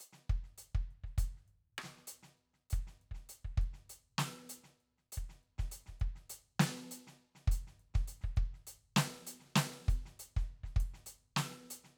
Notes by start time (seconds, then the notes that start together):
0.01 closed hi-hat
0.13 snare
0.29 kick, closed hi-hat
0.44 snare
0.58 closed hi-hat
0.75 kick
0.91 closed hi-hat
1.04 kick, snare
1.18 closed hi-hat, kick
1.37 snare
1.48 closed hi-hat
1.78 cross-stick
1.83 snare
1.97 snare
2.07 closed hi-hat
2.23 snare
2.37 closed hi-hat
2.54 snare
2.70 closed hi-hat, kick
2.87 snare
3.01 closed hi-hat
3.11 kick, snare
3.29 closed hi-hat
3.45 kick
3.58 kick, closed hi-hat
3.73 snare
3.90 closed hi-hat
4.18 snare
4.38 snare
4.49 closed hi-hat
4.64 snare
4.80 closed hi-hat
4.98 snare
5.12 closed hi-hat
5.17 kick
5.29 snare
5.43 closed hi-hat
5.58 kick, snare
5.71 closed hi-hat
5.86 kick, snare
6.00 kick, closed hi-hat
6.16 snare
6.30 closed hi-hat
6.59 snare
6.77 snare
6.91 closed hi-hat
7.07 snare
7.20 closed hi-hat
7.35 snare
7.48 closed hi-hat, kick
7.67 snare
7.79 closed hi-hat
7.94 kick, snare
8.08 closed hi-hat
8.21 kick, snare
8.37 kick, closed hi-hat
8.54 snare
8.67 closed hi-hat
8.96 snare
9.02 cross-stick
9.27 closed hi-hat
9.40 snare
9.44 snare
9.47 snare
9.56 snare
9.71 snare
9.88 closed hi-hat, kick
10.06 snare
10.19 closed hi-hat
10.37 kick, snare
10.63 kick, snare
10.76 kick, closed hi-hat
10.94 snare
11.06 closed hi-hat
11.36 snare
11.51 snare
11.55 snare
11.70 closed hi-hat
11.84 snare